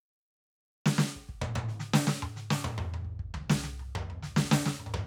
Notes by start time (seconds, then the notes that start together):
0.86 snare
0.98 snare, hi-hat pedal
1.16 kick
1.29 kick
1.42 high tom
1.55 high tom
1.68 snare
1.80 snare
1.93 snare
2.07 snare
2.22 high tom
2.36 snare
2.50 snare
2.64 high tom
2.78 mid tom
2.94 high tom
3.05 kick
3.19 kick
3.34 floor tom
3.50 snare
3.63 snare
3.79 high tom
3.95 mid tom
4.10 high tom
4.23 snare
4.36 snare
4.51 snare
4.66 snare
4.80 high tom
4.86 high tom
4.94 mid tom